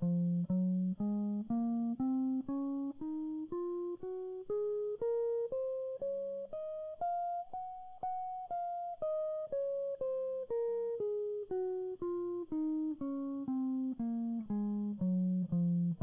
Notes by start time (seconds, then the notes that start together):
0.03 F3
0.51 F#3
1.01 G#3
1.51 A#3
2.00 C4
2.49 C#4
3.01 D#4
3.52 F4
4.03 F#4
4.50 G#4
5.02 A#4
5.52 C5
6.02 C#5
6.53 D#5
7.01 F5
7.54 F#5
8.03 F#5
8.51 F5
9.02 D#5
9.53 C#5
10.01 C5
10.51 A#4
11.00 G#4
11.51 F#4
12.02 F4
12.52 D#4
13.01 C#4
13.48 C4
14.00 A#3
14.51 G#3
15.02 F#3
15.53 F3